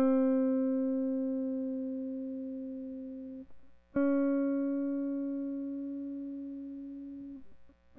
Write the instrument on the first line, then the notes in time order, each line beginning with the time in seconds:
electric guitar
0.00 C4
3.97 C#4